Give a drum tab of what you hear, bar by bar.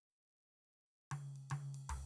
Ride      |--------x-xx-xx-|
High tom  |--------o--o----|
Floor tom |--------------o-|